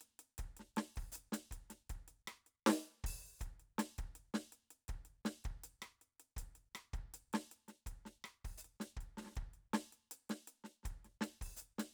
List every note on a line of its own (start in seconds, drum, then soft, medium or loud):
0.01 closed hi-hat soft
0.19 closed hi-hat soft
0.38 kick soft
0.38 closed hi-hat soft
0.57 snare soft
0.57 closed hi-hat soft
0.77 snare medium
0.77 closed hi-hat soft
0.96 kick soft
0.96 open hi-hat soft
1.12 closed hi-hat soft
1.12 hi-hat pedal medium
1.32 snare medium
1.32 closed hi-hat medium
1.51 kick soft
1.51 closed hi-hat soft
1.70 snare soft
1.70 closed hi-hat soft
1.90 kick soft
1.90 closed hi-hat soft
2.08 closed hi-hat soft
2.27 cross-stick medium
2.27 closed hi-hat soft
2.46 closed hi-hat soft
2.66 snare medium
2.66 open hi-hat medium
2.69 snare medium
2.69 open hi-hat soft
3.04 kick soft
3.04 open hi-hat medium
3.39 kick soft
3.39 closed hi-hat soft
3.39 hi-hat pedal soft
3.60 closed hi-hat soft
3.78 snare medium
3.78 closed hi-hat medium
3.98 kick soft
3.98 closed hi-hat soft
4.15 closed hi-hat soft
4.34 snare medium
4.34 closed hi-hat soft
4.52 closed hi-hat soft
4.71 closed hi-hat soft
4.88 kick soft
4.88 closed hi-hat soft
5.05 closed hi-hat soft
5.25 snare medium
5.25 closed hi-hat soft
5.44 kick soft
5.44 closed hi-hat soft
5.64 closed hi-hat medium
5.82 cross-stick medium
5.82 closed hi-hat soft
6.01 closed hi-hat soft
6.20 closed hi-hat soft
6.37 kick soft
6.37 closed hi-hat medium
6.55 closed hi-hat soft
6.75 cross-stick medium
6.75 closed hi-hat soft
6.93 kick soft
6.93 closed hi-hat soft
7.14 closed hi-hat medium
7.33 snare medium
7.33 closed hi-hat soft
7.52 closed hi-hat soft
7.68 snare soft
7.68 closed hi-hat soft
7.86 kick soft
7.86 closed hi-hat soft
8.05 snare soft
8.05 closed hi-hat soft
8.24 cross-stick medium
8.24 closed hi-hat soft
8.45 kick soft
8.45 open hi-hat soft
8.58 hi-hat pedal medium
8.65 closed hi-hat soft
8.80 snare soft
8.80 closed hi-hat soft
8.97 kick soft
9.01 closed hi-hat soft
9.17 snare soft
9.17 closed hi-hat soft
9.21 snare soft
9.24 snare soft
9.26 snare soft
9.31 snare soft
9.36 kick soft
9.36 closed hi-hat soft
9.54 closed hi-hat soft
9.74 snare medium
9.74 closed hi-hat soft
9.93 closed hi-hat soft
10.11 closed hi-hat medium
10.30 snare soft
10.30 closed hi-hat soft
10.48 closed hi-hat soft
10.64 snare soft
10.64 closed hi-hat soft
10.83 kick soft
10.83 snare soft
10.83 closed hi-hat soft
11.05 snare soft
11.05 closed hi-hat soft
11.21 snare medium
11.21 closed hi-hat soft
11.41 kick soft
11.41 open hi-hat soft
11.57 hi-hat pedal medium
11.61 closed hi-hat soft
11.79 snare medium
11.79 closed hi-hat medium